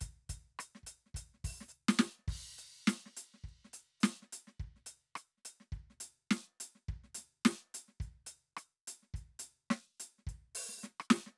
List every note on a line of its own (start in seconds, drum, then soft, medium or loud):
0.01 closed hi-hat medium
0.01 kick soft
0.30 closed hi-hat medium
0.30 kick soft
0.59 closed hi-hat medium
0.59 cross-stick medium
0.75 snare soft
0.83 closed hi-hat medium
0.83 kick soft
1.06 snare soft
1.15 closed hi-hat medium
1.15 kick soft
1.34 snare soft
1.44 open hi-hat medium
1.44 kick soft
1.61 snare soft
1.69 hi-hat pedal medium
1.89 snare loud
1.99 snare loud
2.19 snare soft
2.28 kick soft
2.28 crash medium
2.58 closed hi-hat medium
2.88 closed hi-hat medium
2.88 snare loud
3.06 snare soft
3.17 closed hi-hat medium
3.34 snare soft
3.44 kick soft
3.49 closed hi-hat soft
3.65 snare soft
3.73 open hi-hat medium
4.00 closed hi-hat medium
4.00 snare loud
4.00 hi-hat pedal medium
4.22 snare soft
4.33 closed hi-hat medium
4.48 snare soft
4.60 kick soft
4.60 closed hi-hat soft
4.76 snare soft
4.86 closed hi-hat medium
5.16 closed hi-hat medium
5.16 cross-stick medium
5.38 snare soft
5.45 closed hi-hat medium
5.60 snare soft
5.72 kick soft
5.72 closed hi-hat soft
5.90 snare soft
6.00 closed hi-hat loud
6.31 closed hi-hat soft
6.31 snare medium
6.60 closed hi-hat loud
6.75 snare soft
6.89 kick soft
6.89 closed hi-hat soft
7.04 snare soft
7.15 closed hi-hat loud
7.15 snare soft
7.45 closed hi-hat soft
7.45 snare loud
7.74 closed hi-hat loud
7.88 snare soft
8.00 closed hi-hat soft
8.00 kick soft
8.27 closed hi-hat medium
8.57 closed hi-hat medium
8.57 cross-stick medium
8.88 closed hi-hat loud
9.03 snare soft
9.14 closed hi-hat soft
9.14 kick soft
9.39 closed hi-hat loud
9.71 snare medium
9.71 closed hi-hat medium
10.00 closed hi-hat loud
10.19 snare soft
10.27 kick soft
10.27 closed hi-hat medium
10.55 open hi-hat loud
10.69 snare soft
10.74 snare soft
10.77 snare soft
10.83 snare soft
10.83 hi-hat pedal medium
11.00 cross-stick medium
11.10 snare loud
11.27 snare soft